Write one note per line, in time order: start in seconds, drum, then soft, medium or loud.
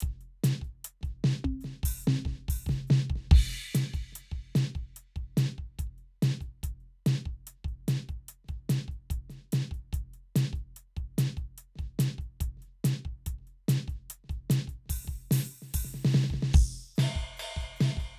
0.01 closed hi-hat loud
0.01 kick medium
0.01 snare soft
0.21 closed hi-hat soft
0.44 closed hi-hat loud
0.44 snare loud
0.62 kick soft
0.62 closed hi-hat soft
0.85 closed hi-hat loud
1.02 kick soft
1.02 snare soft
1.02 closed hi-hat soft
1.25 snare loud
1.45 kick medium
1.45 high tom loud
1.61 snare medium
1.61 hi-hat pedal medium
1.84 kick medium
1.84 open hi-hat loud
2.04 snare loud
2.04 hi-hat pedal medium
2.04 high tom loud
2.26 kick soft
2.26 snare medium
2.49 open hi-hat loud
2.49 kick medium
2.67 kick soft
2.67 snare medium
2.67 floor tom medium
2.88 snare loud
2.88 floor tom loud
2.88 hi-hat pedal medium
3.10 kick medium
3.16 snare soft
3.32 kick loud
3.32 hi-hat pedal medium
3.32 crash loud
3.75 closed hi-hat loud
3.75 snare loud
3.94 closed hi-hat soft
3.94 kick soft
4.13 closed hi-hat loud
4.13 snare soft
4.32 kick soft
4.56 closed hi-hat medium
4.56 snare loud
4.76 kick soft
4.76 closed hi-hat soft
4.84 kick soft
4.97 closed hi-hat medium
5.16 kick soft
5.16 closed hi-hat soft
5.38 closed hi-hat medium
5.38 snare loud
5.59 kick soft
5.79 closed hi-hat medium
5.79 kick soft
5.88 kick soft
5.99 closed hi-hat soft
6.23 closed hi-hat medium
6.23 snare loud
6.41 kick soft
6.41 closed hi-hat soft
6.64 closed hi-hat medium
6.64 kick soft
6.81 closed hi-hat soft
7.07 closed hi-hat medium
7.07 snare loud
7.26 kick soft
7.47 closed hi-hat medium
7.47 snare soft
7.65 kick soft
7.65 closed hi-hat soft
7.89 closed hi-hat medium
7.89 snare loud
8.09 kick soft
8.09 closed hi-hat soft
8.29 closed hi-hat medium
8.45 snare soft
8.45 closed hi-hat soft
8.49 kick soft
8.70 closed hi-hat loud
8.70 snare loud
8.89 kick soft
8.89 closed hi-hat soft
9.11 closed hi-hat medium
9.11 kick medium
9.30 closed hi-hat soft
9.30 snare soft
9.53 closed hi-hat loud
9.53 snare loud
9.72 kick soft
9.72 closed hi-hat soft
9.93 closed hi-hat medium
9.93 kick medium
10.14 closed hi-hat soft
10.36 closed hi-hat loud
10.36 snare loud
10.53 kick soft
10.53 closed hi-hat soft
10.77 closed hi-hat medium
10.97 kick soft
10.97 closed hi-hat soft
11.19 closed hi-hat loud
11.19 snare loud
11.38 kick soft
11.38 closed hi-hat soft
11.58 closed hi-hat medium
11.76 kick soft
11.76 snare soft
11.76 closed hi-hat soft
12.00 closed hi-hat loud
12.00 snare loud
12.19 kick soft
12.19 closed hi-hat soft
12.41 closed hi-hat loud
12.41 kick medium
12.58 snare soft
12.62 closed hi-hat soft
12.85 closed hi-hat loud
12.85 snare loud
13.06 kick soft
13.27 closed hi-hat medium
13.27 kick soft
13.39 kick soft
13.39 snare soft
13.47 closed hi-hat soft
13.69 closed hi-hat loud
13.69 snare loud
13.88 kick soft
13.88 snare soft
13.88 closed hi-hat soft
14.10 closed hi-hat loud
14.10 snare soft
14.25 snare soft
14.30 kick soft
14.30 closed hi-hat soft
14.51 closed hi-hat loud
14.51 snare loud
14.68 closed hi-hat soft
14.68 kick soft
14.86 open hi-hat loud
14.86 kick medium
14.86 snare soft
15.05 kick soft
15.05 snare soft
15.11 open hi-hat soft
15.32 open hi-hat loud
15.32 snare loud
15.51 open hi-hat soft
15.63 snare soft
15.74 open hi-hat loud
15.74 kick medium
15.85 snare soft
15.95 snare soft
16.05 snare loud
16.15 snare loud
16.25 snare medium
16.31 kick soft
16.31 snare medium
16.43 snare medium
16.54 kick loud
16.54 crash loud
16.96 snare loud
16.96 hi-hat pedal medium
16.96 ride loud
17.16 kick medium
17.16 ride soft
17.37 hi-hat pedal medium
17.37 ride loud
17.57 kick soft
17.57 ride soft
17.76 hi-hat pedal medium
17.81 snare loud
17.81 ride medium
17.98 kick soft
17.98 ride soft